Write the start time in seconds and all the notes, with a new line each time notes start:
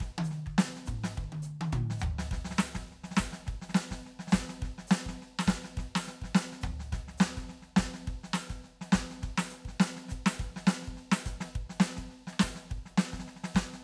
0.01 kick, snare
0.08 kick
0.19 high tom
0.25 hi-hat pedal
0.31 snare
0.47 kick, cross-stick
0.59 snare
0.77 snare
0.87 kick, hi-hat pedal, mid tom
0.98 kick
1.04 snare
1.18 kick, high tom
1.25 kick
1.33 high tom
1.43 hi-hat pedal, high tom
1.62 high tom
1.66 hi-hat pedal
1.73 kick, mid tom
1.91 snare
2.00 kick, hi-hat pedal, floor tom
2.19 snare
2.32 kick, snare
2.38 kick
2.42 kick, snare
2.51 snare
2.58 snare, hi-hat pedal
2.75 kick, snare
2.92 snare
3.04 snare
3.12 snare
3.16 kick, snare, hi-hat pedal
3.26 kick
3.33 snare
3.47 kick, snare
3.55 kick
3.62 snare
3.70 snare
3.75 snare, hi-hat pedal
3.91 kick, snare
4.07 snare
4.20 snare
4.28 snare, hi-hat pedal
4.33 kick, snare
4.43 kick
4.49 snare
4.62 kick, snare
4.69 kick
4.79 snare
4.88 snare, hi-hat pedal
5.06 kick, snare
5.22 snare
5.39 snare
5.47 kick, snare, hi-hat pedal
5.54 kick
5.65 snare
5.78 kick, snare
5.85 kick
5.96 snare
6.04 hi-hat pedal
6.08 snare
6.22 kick, snare
6.35 snare
6.53 snare
6.62 kick, hi-hat pedal, floor tom
6.70 kick
6.73 kick
6.80 snare
6.93 kick, snare
7.00 kick
7.09 snare
7.18 snare, hi-hat pedal
7.37 kick, snare
7.50 snare
7.63 snare
7.77 kick, snare, hi-hat pedal
7.85 kick
7.94 snare
8.07 kick, snare
8.14 kick
8.24 snare
8.34 snare, hi-hat pedal
8.50 kick, snare
8.64 snare
8.82 snare
8.93 kick, snare, hi-hat pedal
9.11 snare
9.23 kick, snare
9.30 kick
9.38 snare
9.50 snare, hi-hat pedal
9.66 kick, snare
9.80 snare
9.97 snare
10.09 kick, snare, hi-hat pedal
10.27 snare
10.40 kick, snare
10.46 kick
10.57 snare
10.67 snare, hi-hat pedal
10.83 snare
10.88 kick
10.97 snare
11.12 snare
11.26 kick, snare, hi-hat pedal
11.32 kick
11.41 snare
11.56 kick
11.63 kick
11.70 snare
11.81 snare, hi-hat pedal
11.97 kick, snare
12.11 snare
12.28 snare
12.33 cross-stick
12.40 kick, snare, hi-hat pedal
12.56 snare
12.70 kick, snare
12.78 kick
12.86 snare
12.98 snare, hi-hat pedal
13.13 kick, snare
13.20 snare
13.28 snare
13.37 snare
13.44 snare
13.55 kick, snare, hi-hat pedal
13.61 kick
13.74 snare